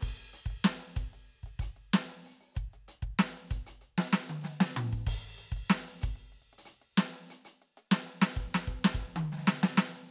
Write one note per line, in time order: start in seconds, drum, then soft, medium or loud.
0.01 kick medium
0.01 crash medium
0.18 closed hi-hat soft
0.34 closed hi-hat loud
0.46 kick soft
0.50 kick soft
0.50 closed hi-hat soft
0.64 snare loud
0.81 closed hi-hat soft
0.96 closed hi-hat loud
0.96 kick medium
1.14 closed hi-hat medium
1.31 closed hi-hat soft
1.43 kick soft
1.43 closed hi-hat medium
1.59 closed hi-hat loud
1.59 kick soft
1.77 closed hi-hat soft
1.94 snare loud
2.10 closed hi-hat soft
2.26 open hi-hat medium
2.41 open hi-hat soft
2.55 closed hi-hat soft
2.55 kick soft
2.55 hi-hat pedal medium
2.74 closed hi-hat medium
2.88 closed hi-hat loud
3.03 kick soft
3.03 closed hi-hat soft
3.19 snare loud
3.35 closed hi-hat medium
3.51 closed hi-hat loud
3.51 kick medium
3.67 closed hi-hat loud
3.81 closed hi-hat medium
3.98 snare loud
4.13 snare loud
4.30 high tom medium
4.41 snare medium
4.41 hi-hat pedal medium
4.61 snare loud
4.77 mid tom loud
4.93 kick soft
5.07 kick medium
5.07 crash loud
5.23 closed hi-hat soft
5.38 closed hi-hat medium
5.52 kick soft
5.57 closed hi-hat soft
5.70 snare loud
5.86 closed hi-hat soft
6.02 closed hi-hat loud
6.02 kick medium
6.16 closed hi-hat soft
6.32 closed hi-hat soft
6.42 closed hi-hat soft
6.53 closed hi-hat soft
6.58 closed hi-hat loud
6.66 closed hi-hat loud
6.82 closed hi-hat soft
6.98 snare loud
7.14 closed hi-hat soft
7.30 closed hi-hat loud
7.45 closed hi-hat loud
7.62 closed hi-hat soft
7.78 closed hi-hat medium
7.92 snare loud
8.07 closed hi-hat medium
8.22 snare loud
8.37 kick medium
8.55 snare loud
8.68 kick soft
8.85 snare loud
8.95 kick medium
9.04 hi-hat pedal soft
9.16 closed hi-hat soft
9.16 high tom loud
9.32 snare soft
9.37 snare soft
9.41 snare soft
9.45 snare soft
9.45 snare loud
9.45 hi-hat pedal medium
9.63 snare loud
9.78 snare loud